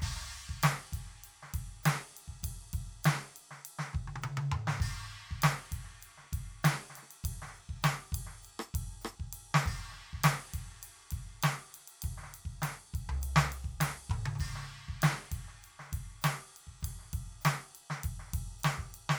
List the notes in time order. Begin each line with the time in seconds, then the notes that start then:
0.01 kick, hi-hat pedal, crash
0.15 kick, snare
0.21 snare
0.24 snare
0.49 kick
0.62 snare, hi-hat pedal, ride
0.93 kick, ride
1.08 snare
1.24 hi-hat pedal, ride
1.43 snare
1.48 snare
1.54 kick, ride
1.61 kick
1.83 snare, hi-hat pedal, ride
2.17 ride
2.28 kick, snare
2.43 kick, hi-hat pedal, ride
2.73 kick, ride
2.85 kick
3.04 snare, hi-hat pedal, ride
3.17 snare
3.36 ride
3.51 snare
3.65 hi-hat pedal, ride
3.79 snare
3.94 kick, high tom
4.01 kick
4.08 high tom
4.16 high tom
4.23 hi-hat pedal, high tom
4.38 high tom
4.52 mid tom
4.68 snare
4.80 kick, hi-hat pedal, crash
4.91 kick
4.93 kick
5.31 kick
5.42 snare, hi-hat pedal, ride
5.72 kick, ride
5.78 kick
5.85 snare
6.01 hi-hat pedal, ride
6.18 snare
6.24 cross-stick
6.31 kick, snare, ride
6.40 kick
6.63 snare, hi-hat pedal, ride
6.90 snare, hi-hat pedal
6.96 snare, ride
7.03 cross-stick
7.11 ride
7.24 kick, hi-hat pedal, ride
7.30 kick
7.34 kick
7.42 snare
7.49 snare
7.57 ride
7.69 kick
7.83 snare, hi-hat pedal, ride
8.12 kick, ride
8.23 kick, snare
8.43 hi-hat pedal, ride
8.60 cross-stick
8.74 kick, ride
8.81 kick
9.01 cross-stick, hi-hat pedal
9.20 kick
9.26 kick
9.33 ride
9.55 snare
9.65 kick, hi-hat pedal, crash
9.73 kick
9.78 kick
9.92 snare
10.13 kick
10.24 snare, hi-hat pedal, ride
10.54 kick, ride
10.60 kick
10.69 snare
10.73 snare
10.83 hi-hat pedal, ride
11.11 kick, ride
11.19 kick
11.42 snare, hi-hat pedal, ride
11.70 snare
11.75 ride
11.80 snare
11.88 ride
12.02 kick, hi-hat pedal, ride
12.10 kick
12.18 snare
12.24 snare
12.28 snare
12.34 ride
12.46 kick
12.62 snare, hi-hat pedal, ride
12.94 kick, ride
13.01 kick
13.09 floor tom
13.22 hi-hat pedal, ride
13.36 snare
13.52 ride
13.65 kick
13.80 snare, hi-hat pedal, ride
14.10 kick, mid tom
14.26 high tom
14.36 hi-hat pedal, high tom
14.40 kick, crash
14.46 kick
14.56 snare
14.64 snare
14.89 kick
15.02 snare, hi-hat pedal, ride
15.16 snare
15.32 kick, ride
15.38 kick
15.48 snare
15.62 hi-hat pedal, ride
15.80 snare
15.89 kick, snare, ride
16.00 kick
16.22 snare, hi-hat pedal, ride
16.57 ride
16.67 kick, snare
16.81 kick, snare, hi-hat pedal, ride
16.93 kick
16.99 snare
17.02 snare
17.05 snare
17.14 kick, ride
17.20 kick
17.41 snare, hi-hat pedal, ride
17.75 ride
17.90 snare
18.04 kick, hi-hat pedal, ride
18.11 kick
18.20 snare
18.28 snare
18.34 kick, ride
18.41 kick
18.59 hi-hat pedal
18.64 snare, ride
18.78 kick, snare
18.84 kick
18.89 hi-hat pedal
18.95 ride
19.10 snare